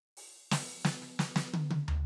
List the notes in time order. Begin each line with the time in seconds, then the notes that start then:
0.17 open hi-hat
0.51 open hi-hat, snare
0.85 snare
1.02 snare
1.19 snare
1.36 snare
1.47 hi-hat pedal
1.54 high tom
1.71 high tom
1.88 floor tom